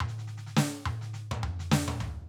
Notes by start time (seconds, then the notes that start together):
0.00 high tom
0.08 snare
0.18 snare
0.27 snare
0.47 snare
0.57 snare
0.78 snare
0.86 high tom
1.01 snare
1.13 snare
1.31 open hi-hat, high tom
1.43 mid tom
1.59 snare
1.72 snare
1.88 high tom
2.00 floor tom